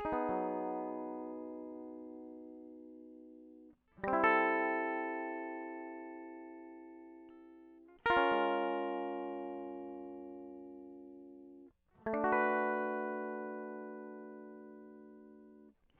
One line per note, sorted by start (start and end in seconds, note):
0.00 1.70 G#4
0.06 3.74 D#4
0.13 3.74 B3
0.30 3.73 F#3
4.04 8.05 G3
4.04 8.02 C4
4.13 8.00 E4
4.24 6.73 A4
8.06 10.65 A#4
8.10 11.71 F4
8.17 11.71 C#4
8.32 11.65 G#3
12.07 15.75 A3
12.14 15.73 D4
12.24 15.70 F#4
12.33 14.86 B4